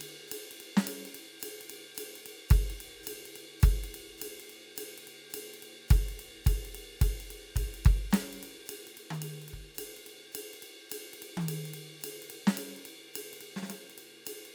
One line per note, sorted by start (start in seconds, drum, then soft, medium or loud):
0.01 ride medium
0.28 hi-hat pedal medium
0.32 ride loud
0.51 ride medium
0.60 ride medium
0.77 snare loud
0.77 hi-hat pedal medium
0.87 ride loud
1.05 ride medium
1.15 ride medium
1.40 hi-hat pedal medium
1.40 ride loud
1.61 ride medium
1.70 ride medium
1.95 hi-hat pedal medium
1.95 ride loud
2.16 ride medium
2.26 ride medium
2.49 kick loud
2.49 hi-hat pedal medium
2.49 ride loud
2.70 ride medium
2.81 ride medium
3.03 hi-hat pedal medium
3.03 ride loud
3.26 ride medium
3.36 ride medium
3.60 kick loud
3.60 hi-hat pedal medium
3.60 ride loud
3.84 ride medium
3.94 ride medium
4.18 hi-hat pedal medium
4.22 ride loud
4.40 ride medium
4.50 ride medium
4.76 hi-hat pedal medium
4.76 ride loud
4.98 ride medium
5.07 ride medium
5.30 hi-hat pedal medium
5.34 ride loud
5.54 ride medium
5.63 ride medium
5.88 kick loud
5.88 hi-hat pedal medium
5.88 ride loud
6.09 ride medium
6.19 ride medium
6.44 kick loud
6.44 hi-hat pedal medium
6.44 ride loud
6.65 ride medium
6.75 ride medium
7.00 kick medium
7.00 hi-hat pedal medium
7.00 ride loud
7.20 ride medium
7.31 ride medium
7.55 kick medium
7.55 hi-hat pedal medium
7.55 ride loud
7.74 ride medium
7.85 kick loud
7.85 ride medium
8.11 snare loud
8.11 hi-hat pedal medium
8.11 ride loud
8.33 ride medium
8.43 ride medium
8.66 hi-hat pedal medium
8.66 ride loud
8.87 ride medium
9.11 hi-hat pedal medium
9.11 high tom medium
9.22 ride loud
9.42 ride soft
9.48 ride medium
9.53 kick soft
9.75 hi-hat pedal medium
9.75 ride loud
9.97 ride medium
10.07 ride medium
10.32 hi-hat pedal medium
10.32 ride loud
10.54 ride medium
10.63 ride medium
10.90 hi-hat pedal medium
10.90 ride loud
11.14 ride medium
11.22 ride medium
11.37 hi-hat pedal medium
11.37 high tom loud
11.49 ride loud
11.66 ride medium
11.74 ride medium
12.01 hi-hat pedal medium
12.01 ride loud
12.22 ride medium
12.30 ride medium
12.47 snare loud
12.47 hi-hat pedal medium
12.57 ride loud
12.77 ride soft
12.85 ride medium
13.14 hi-hat pedal medium
13.14 ride loud
13.33 ride medium
13.41 ride medium
13.56 snare medium
13.63 snare medium
13.63 hi-hat pedal medium
13.69 snare soft
13.69 ride medium
13.90 ride soft
13.98 ride medium
14.25 hi-hat pedal medium
14.25 ride loud
14.45 ride medium